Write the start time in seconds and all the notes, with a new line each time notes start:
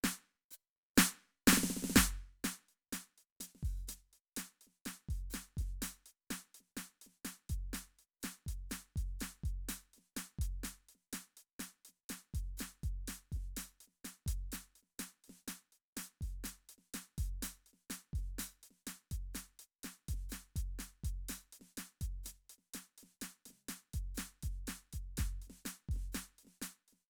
0.03 snare, hi-hat pedal
0.51 hi-hat pedal
0.95 snare, hi-hat pedal
1.47 snare, hi-hat pedal
1.52 snare
1.57 snare
1.63 snare
1.70 snare
1.76 snare
1.82 snare
1.84 snare
1.90 snare
1.96 kick, snare
2.44 closed hi-hat, snare
2.68 closed hi-hat
2.92 closed hi-hat, snare
3.18 closed hi-hat
3.40 closed hi-hat, snare
3.55 snare
3.63 kick, open hi-hat
3.87 closed hi-hat, snare, hi-hat pedal
4.13 closed hi-hat
4.36 closed hi-hat, snare
4.61 closed hi-hat
4.67 snare
4.85 closed hi-hat, snare
5.09 kick, snare, open hi-hat
5.30 closed hi-hat, snare, hi-hat pedal
5.57 closed hi-hat, kick, snare
5.82 open hi-hat, snare
6.06 closed hi-hat
6.30 closed hi-hat, snare
6.54 closed hi-hat
6.60 snare
6.77 closed hi-hat, snare
7.01 closed hi-hat
7.06 snare
7.25 closed hi-hat, snare
7.49 closed hi-hat, kick
7.73 closed hi-hat, snare, hi-hat pedal
7.99 closed hi-hat
8.20 closed hi-hat, snare, hi-hat pedal
8.46 closed hi-hat, kick
8.69 closed hi-hat, snare, hi-hat pedal
8.96 closed hi-hat, kick
9.00 snare
9.19 closed hi-hat, snare, hi-hat pedal
9.43 kick, closed hi-hat
9.68 open hi-hat, snare
9.93 snare, closed hi-hat
9.98 snare
10.16 closed hi-hat, snare
10.39 closed hi-hat, kick
10.63 closed hi-hat, snare
10.89 closed hi-hat
10.95 snare
11.13 closed hi-hat, snare
11.37 closed hi-hat
11.59 closed hi-hat, snare
11.85 closed hi-hat, snare
12.09 closed hi-hat, snare
12.34 closed hi-hat, kick, snare
12.57 closed hi-hat, snare, hi-hat pedal
12.83 closed hi-hat, kick
13.07 open hi-hat, snare
13.32 kick, closed hi-hat
13.36 snare
13.56 open hi-hat, snare
13.80 closed hi-hat
13.87 snare
14.04 closed hi-hat, snare
14.26 open hi-hat, kick
14.52 open hi-hat, snare, hi-hat pedal
14.75 closed hi-hat
14.82 snare
14.99 closed hi-hat, snare
15.24 snare, closed hi-hat
15.29 snare
15.48 closed hi-hat, snare
15.72 closed hi-hat
15.96 open hi-hat, snare
16.21 kick, snare, open hi-hat
16.44 closed hi-hat, snare, hi-hat pedal
16.69 closed hi-hat
16.78 snare
16.94 closed hi-hat, snare
17.18 open hi-hat, kick
17.42 open hi-hat, snare, hi-hat pedal
17.66 closed hi-hat
17.73 snare
17.90 closed hi-hat, snare
18.13 kick, closed hi-hat
18.18 snare
18.38 open hi-hat, snare
18.63 closed hi-hat
18.70 snare
18.87 closed hi-hat, snare
19.11 closed hi-hat, kick
19.34 closed hi-hat, snare, hi-hat pedal
19.59 closed hi-hat
19.83 closed hi-hat, snare
20.08 closed hi-hat, kick
20.13 snare
20.29 closed hi-hat, snare, hi-hat pedal
20.56 closed hi-hat, kick
20.79 closed hi-hat, snare
21.04 closed hi-hat, kick
21.28 open hi-hat, snare
21.52 closed hi-hat
21.59 snare
21.61 snare
21.77 closed hi-hat, snare
22.01 closed hi-hat, kick
22.23 closed hi-hat, snare, hi-hat pedal
22.49 closed hi-hat
22.58 snare
22.74 closed hi-hat, snare
22.98 closed hi-hat
23.03 snare
23.21 closed hi-hat, snare
23.45 closed hi-hat, snare, mid tom
23.50 snare
23.68 closed hi-hat, snare
23.93 closed hi-hat, kick
24.14 closed hi-hat, snare, hi-hat pedal
24.42 closed hi-hat, kick
24.47 snare
24.66 closed hi-hat, snare, hi-hat pedal
24.93 closed hi-hat, kick
25.17 open hi-hat, kick, snare
25.24 kick
25.42 closed hi-hat
25.47 snare
25.50 snare
25.65 closed hi-hat, snare
25.89 kick, closed hi-hat
25.93 snare
25.96 snare
26.12 closed hi-hat, snare, hi-hat pedal
26.38 closed hi-hat
26.43 snare
26.47 snare
26.61 closed hi-hat, snare
26.88 closed hi-hat
26.92 snare